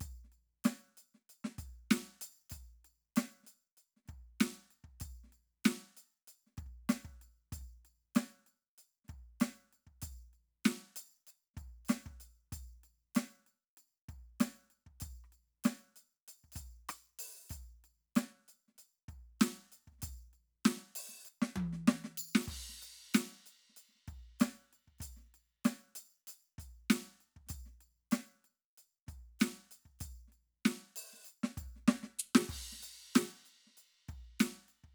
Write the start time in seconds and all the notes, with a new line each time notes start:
0.01 kick, percussion
0.25 snare
0.32 percussion
0.65 snare, percussion
0.98 percussion
1.15 snare
1.30 percussion
1.45 snare
1.59 kick, percussion
1.91 snare, percussion
2.22 percussion
2.50 kick, percussion
2.53 percussion
2.85 percussion
3.17 snare, percussion
3.44 snare, percussion
3.78 percussion
3.97 snare
4.06 kick, snare, percussion
4.41 snare, percussion
4.71 percussion
4.84 kick
5.01 kick, percussion
5.24 snare
5.27 snare
5.32 snare, percussion
5.65 snare, percussion
5.97 percussion
6.28 percussion
6.47 snare
6.52 snare
6.58 kick, percussion
6.67 kick
6.90 snare, percussion
7.05 kick
7.22 percussion
7.53 kick, percussion
7.59 kick
7.61 kick
7.85 percussion
8.16 snare, percussion
8.47 percussion
8.78 percussion
9.05 snare, percussion
9.10 kick
9.41 snare, percussion
9.73 percussion
9.87 kick
10.02 kick, percussion
10.12 kick
10.34 percussion
10.65 snare, percussion
10.96 percussion
11.27 percussion
11.54 kick, snare
11.58 percussion
11.86 percussion
11.89 snare, percussion
12.06 kick, snare
12.21 percussion
12.53 kick, percussion
12.84 percussion
13.15 snare, percussion
13.47 percussion
13.78 percussion
14.09 kick, percussion
14.40 snare, percussion
14.71 percussion
14.87 kick
15.01 kick, percussion
15.24 cross-stick
15.33 percussion
15.64 snare, percussion
15.96 percussion
16.28 percussion
16.44 kick
16.52 kick, percussion
16.56 percussion
16.89 cross-stick, percussion
17.19 percussion
17.50 kick, percussion
17.52 percussion
17.85 percussion
18.16 snare, percussion
18.49 percussion
18.68 snare
18.72 snare
18.76 snare, percussion
19.09 kick, percussion
19.40 snare, percussion
19.72 percussion
19.88 kick
19.92 snare
19.99 snare, percussion
20.03 kick
20.09 kick
20.34 percussion
20.65 snare, percussion
20.77 snare
20.96 percussion
21.09 snare
21.13 snare
21.26 percussion
21.42 snare
21.56 kick, high tom
21.73 snare
21.88 snare
22.05 snare
22.18 percussion
22.36 snare
22.43 percussion
22.48 kick, crash
22.70 snare
22.74 snare
22.77 snare
22.83 percussion
23.14 snare, percussion
23.32 snare
23.46 percussion
23.70 snare
23.77 percussion
23.89 snare
23.96 snare
24.08 kick, percussion
24.40 snare, percussion
24.73 percussion
24.88 kick
24.99 kick, snare, percussion
25.02 percussion
25.17 snare
25.20 snare
25.25 snare
25.35 percussion
25.65 snare, percussion
25.96 percussion
26.28 percussion
26.29 percussion
26.59 kick, percussion
26.90 snare, percussion
27.21 percussion
27.37 kick
27.47 kick, snare, percussion
27.66 snare
27.81 percussion
28.12 snare, percussion
28.45 percussion
28.78 percussion
29.07 kick, snare, percussion
29.40 snare, percussion
29.71 percussion
29.86 kick
30.00 kick, percussion
30.28 snare
30.33 percussion
30.65 snare, percussion
30.96 percussion
31.13 snare
31.25 percussion
31.27 percussion
31.44 snare
31.58 kick, percussion
31.63 kick
31.66 kick
31.76 snare
31.88 snare
32.04 snare
32.19 floor tom
32.35 snare
32.46 kick, snare
32.50 crash
32.55 kick
32.73 snare
32.80 snare, percussion
33.16 snare, percussion
33.28 snare
33.46 percussion
33.67 snare
33.78 percussion
34.09 kick, percussion
34.40 snare, percussion
34.69 percussion
34.84 kick